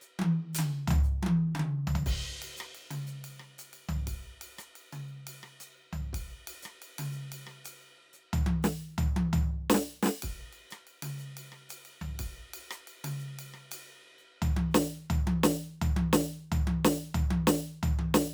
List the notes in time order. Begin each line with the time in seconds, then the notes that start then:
0.01 hi-hat pedal
0.19 high tom
0.21 high tom
0.53 closed hi-hat, hi-hat pedal
0.58 mid tom
0.87 floor tom
0.90 floor tom
1.03 hi-hat pedal
1.22 high tom
1.26 high tom
1.54 hi-hat pedal, mid tom
1.59 mid tom
1.87 floor tom
1.95 floor tom
2.06 kick, ride
2.42 ride
2.57 cross-stick, hi-hat pedal
2.74 ride
2.90 mid tom, ride
3.07 hi-hat pedal
3.24 ride
3.39 cross-stick
3.58 hi-hat pedal, ride
3.73 ride
3.88 floor tom
4.07 kick, ride
4.41 ride
4.58 cross-stick, hi-hat pedal
4.75 ride
4.92 mid tom, ride bell
5.07 hi-hat pedal
5.27 ride
5.43 cross-stick
5.60 hi-hat pedal, ride bell
5.92 floor tom
6.13 kick, ride
6.47 ride
6.62 cross-stick, hi-hat pedal
6.82 ride
6.98 mid tom, ride
7.12 hi-hat pedal
7.32 ride
7.47 cross-stick
7.64 hi-hat pedal, ride
8.13 hi-hat pedal
8.33 floor tom
8.46 high tom
8.62 snare, hi-hat pedal
8.98 floor tom
9.16 high tom
9.33 floor tom
9.70 snare
9.74 snare
10.02 snare
10.06 snare
10.22 kick, ride
10.52 ride
10.70 cross-stick, hi-hat pedal
10.87 ride
11.02 mid tom, ride
11.19 hi-hat pedal
11.37 ride
11.52 cross-stick
11.69 hi-hat pedal, ride
11.85 ride
12.01 floor tom
12.19 kick, ride
12.53 ride
12.71 cross-stick, hi-hat pedal
12.87 ride
13.04 mid tom, ride
13.19 hi-hat pedal
13.39 ride
13.54 cross-stick
13.71 hi-hat pedal, ride
14.18 hi-hat pedal
14.42 floor tom
14.56 high tom
14.71 snare, hi-hat pedal
15.10 floor tom
15.27 high tom
15.43 snare
15.81 floor tom
15.96 high tom
16.13 snare
16.52 floor tom
16.67 high tom
16.84 snare
17.14 floor tom
17.30 high tom
17.47 snare
17.83 floor tom
17.99 high tom
18.14 snare